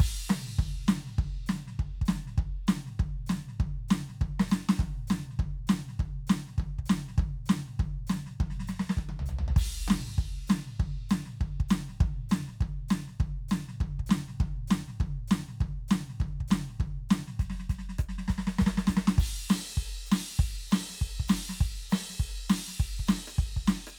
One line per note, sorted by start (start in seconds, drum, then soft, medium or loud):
0.01 kick loud
0.01 crash loud
0.29 snare loud
0.29 hi-hat pedal medium
0.29 high tom loud
0.48 snare soft
0.60 kick loud
0.60 high tom loud
0.88 snare loud
0.88 hi-hat pedal medium
0.88 high tom loud
1.08 snare soft
1.19 kick loud
1.19 high tom loud
1.47 snare loud
1.47 hi-hat pedal medium
1.47 high tom loud
1.69 snare medium
1.80 kick medium
1.80 high tom medium
2.02 kick medium
2.07 snare loud
2.07 hi-hat pedal medium
2.07 high tom loud
2.28 snare soft
2.39 kick loud
2.39 high tom medium
2.68 snare loud
2.68 hi-hat pedal medium
2.68 high tom loud
2.88 snare soft
3.00 kick medium
3.00 high tom loud
3.27 snare loud
3.27 hi-hat pedal medium
3.27 high tom loud
3.50 snare soft
3.61 kick medium
3.61 high tom loud
3.90 snare loud
3.90 hi-hat pedal medium
3.90 high tom loud
4.10 snare soft
4.22 kick medium
4.22 high tom loud
4.41 snare loud
4.48 kick soft
4.48 hi-hat pedal medium
4.53 snare loud
4.70 snare loud
4.80 kick medium
4.80 high tom loud
5.08 snare loud
5.08 hi-hat pedal medium
5.08 high tom loud
5.32 snare soft
5.40 kick medium
5.40 high tom loud
5.68 snare loud
5.68 hi-hat pedal medium
5.68 high tom loud
5.90 snare soft
6.00 kick medium
6.00 high tom loud
6.28 snare loud
6.28 hi-hat pedal medium
6.28 high tom loud
6.48 snare soft
6.59 kick medium
6.59 high tom loud
6.80 kick medium
6.87 snare loud
6.87 hi-hat pedal medium
6.87 high tom loud
7.09 snare soft
7.19 kick loud
7.19 high tom loud
7.47 snare loud
7.47 hi-hat pedal medium
7.47 high tom loud
7.69 snare soft
7.80 kick medium
7.80 high tom loud
8.08 snare loud
8.08 hi-hat pedal medium
8.08 high tom loud
8.27 snare medium
8.41 kick medium
8.41 high tom loud
8.51 snare medium
8.61 snare medium
8.69 snare medium
8.69 hi-hat pedal medium
8.81 snare loud
8.90 snare loud
8.98 kick medium
8.98 high tom loud
9.10 high tom loud
9.20 floor tom loud
9.27 floor tom loud
9.27 hi-hat pedal medium
9.40 floor tom loud
9.49 floor tom loud
9.57 kick loud
9.57 crash loud
9.88 snare loud
9.88 hi-hat pedal medium
9.88 high tom loud
10.09 snare soft
10.19 kick medium
10.19 high tom medium
10.48 snare loud
10.48 hi-hat pedal medium
10.48 high tom loud
10.68 snare soft
10.81 kick medium
10.81 high tom loud
11.10 snare loud
11.10 hi-hat pedal medium
11.10 high tom loud
11.27 snare medium
11.42 kick medium
11.42 high tom loud
11.61 kick medium
11.70 snare loud
11.70 hi-hat pedal medium
11.70 high tom loud
11.90 snare soft
12.02 kick loud
12.02 high tom loud
12.30 snare loud
12.30 hi-hat pedal medium
12.30 high tom loud
12.49 snare soft
12.62 kick medium
12.62 high tom loud
12.90 snare loud
12.90 hi-hat pedal medium
12.90 high tom loud
13.09 snare soft
13.21 kick medium
13.21 high tom loud
13.50 snare loud
13.50 hi-hat pedal medium
13.50 high tom loud
13.69 snare medium
13.81 kick medium
13.81 high tom loud
14.00 kick medium
14.07 hi-hat pedal medium
14.07 high tom loud
14.12 snare loud
14.29 snare soft
14.41 kick medium
14.41 high tom loud
14.69 snare loud
14.69 hi-hat pedal medium
14.69 high tom loud
14.89 snare soft
15.01 kick medium
15.01 high tom loud
15.29 snare loud
15.29 hi-hat pedal medium
15.29 high tom loud
15.49 snare soft
15.62 kick medium
15.62 high tom loud
15.89 snare loud
15.89 hi-hat pedal medium
15.89 high tom loud
16.10 snare soft
16.21 kick medium
16.21 high tom loud
16.41 kick medium
16.49 snare loud
16.49 hi-hat pedal medium
16.49 high tom loud
16.70 snare soft
16.81 kick medium
16.81 high tom loud
17.10 snare loud
17.10 hi-hat pedal medium
17.10 high tom loud
17.28 snare medium
17.40 kick medium
17.40 snare medium
17.40 hi-hat pedal soft
17.51 snare medium
17.61 snare medium
17.71 kick medium
17.71 snare medium
17.71 hi-hat pedal medium
17.80 snare medium
17.90 snare medium
18.00 kick medium
18.00 cross-stick medium
18.00 hi-hat pedal medium
18.10 snare medium
18.19 snare medium
18.29 kick medium
18.29 snare loud
18.29 hi-hat pedal soft
18.39 snare loud
18.48 snare loud
18.60 kick medium
18.60 snare loud
18.60 hi-hat pedal medium
18.68 snare loud
18.79 snare loud
18.88 kick medium
18.88 snare loud
18.88 hi-hat pedal medium
18.98 snare loud
19.08 snare loud
19.19 kick loud
19.19 crash loud
19.50 snare loud
19.50 hi-hat pedal medium
19.50 crash loud
19.78 kick medium
20.07 hi-hat pedal medium
20.13 snare loud
20.13 crash loud
20.40 kick loud
20.70 snare loud
20.70 hi-hat pedal soft
20.70 crash loud
20.91 snare soft
21.02 kick medium
21.21 kick medium
21.29 snare loud
21.29 hi-hat pedal medium
21.29 crash loud
21.50 snare medium
21.62 kick loud
21.91 snare loud
21.91 hi-hat pedal medium
21.91 crash loud
22.11 snare medium
22.21 kick medium
22.50 snare loud
22.50 hi-hat pedal medium
22.50 crash loud
22.69 snare medium
22.81 kick medium
23.00 kick medium
23.08 snare loud
23.08 hi-hat pedal medium
23.08 crash loud
23.29 cross-stick medium
23.39 kick loud
23.57 kick medium
23.68 snare loud
23.68 hi-hat pedal medium
23.68 crash medium
23.88 cross-stick medium